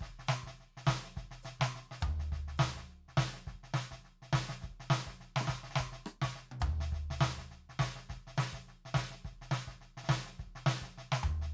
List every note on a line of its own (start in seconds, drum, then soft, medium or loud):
0.01 kick soft
0.01 snare soft
0.08 kick soft
0.19 snare soft
0.28 snare loud
0.28 hi-hat pedal medium
0.43 kick soft
0.43 snare soft
0.48 kick soft
0.60 snare soft
0.77 snare soft
0.86 kick soft
0.86 snare loud
0.86 hi-hat pedal medium
0.94 kick soft
1.04 snare soft
1.17 kick soft
1.17 snare soft
1.24 kick soft
1.31 snare soft
1.43 snare medium
1.43 hi-hat pedal medium
1.60 kick soft
1.60 snare loud
1.76 snare soft
1.91 snare medium
2.01 kick soft
2.01 hi-hat pedal medium
2.01 floor tom loud
2.09 kick soft
2.12 kick soft
2.20 snare soft
2.32 kick soft
2.32 snare soft
2.38 kick soft
2.48 snare soft
2.58 snare loud
2.58 hi-hat pedal medium
2.76 kick soft
2.76 snare soft
2.91 snare soft
3.08 snare soft
3.17 kick soft
3.17 snare loud
3.17 hi-hat pedal medium
3.27 kick soft
3.34 snare soft
3.47 kick soft
3.47 snare soft
3.54 kick soft
3.63 snare soft
3.74 snare loud
3.74 hi-hat pedal medium
3.91 kick soft
3.91 snare soft
4.05 snare soft
4.22 snare soft
4.33 kick soft
4.33 snare loud
4.33 hi-hat pedal medium
4.40 kick soft
4.42 kick soft
4.49 snare medium
4.62 kick soft
4.62 snare soft
4.70 kick soft
4.80 snare soft
4.90 snare loud
4.90 hi-hat pedal medium
5.07 kick soft
5.07 snare soft
5.21 snare soft
5.36 snare medium
5.41 cross-stick medium
5.41 snare medium
5.48 kick soft
5.48 snare medium
5.48 hi-hat pedal medium
5.55 kick soft
5.64 snare soft
5.70 snare soft
5.76 kick soft
5.76 snare loud
5.86 kick soft
5.92 snare soft
6.06 cross-stick medium
6.06 hi-hat pedal medium
6.22 kick soft
6.22 snare loud
6.36 snare soft
6.52 high tom medium
6.60 kick soft
6.60 hi-hat pedal medium
6.60 floor tom loud
6.81 snare medium
6.92 kick soft
6.92 snare soft
7.00 kick soft
7.11 snare medium
7.19 snare loud
7.19 hi-hat pedal medium
7.38 kick soft
7.38 snare soft
7.51 snare soft
7.69 snare soft
7.79 kick soft
7.79 snare loud
7.79 hi-hat pedal medium
7.87 kick soft
7.90 kick soft
7.96 snare soft
8.09 kick soft
8.09 snare soft
8.16 kick soft
8.27 snare soft
8.37 snare loud
8.37 hi-hat pedal soft
8.53 kick soft
8.53 snare soft
8.68 snare soft
8.85 snare soft
8.95 kick soft
8.95 snare loud
8.95 hi-hat pedal medium
9.02 kick soft
9.11 snare soft
9.25 kick soft
9.25 snare soft
9.32 kick soft
9.42 snare soft
9.51 snare loud
9.51 hi-hat pedal medium
9.68 kick soft
9.68 snare soft
9.81 snare soft
9.97 snare medium
10.04 snare soft
10.09 kick soft
10.09 snare loud
10.09 hi-hat pedal medium
10.26 snare soft
10.39 kick soft
10.39 snare soft
10.46 kick soft
10.56 snare soft
10.66 snare loud
10.66 hi-hat pedal medium
10.82 kick soft
10.82 snare soft
10.98 snare soft
11.12 snare loud
11.23 kick soft
11.23 floor tom loud
11.23 hi-hat pedal medium
11.32 kick soft
11.35 kick soft
11.42 snare soft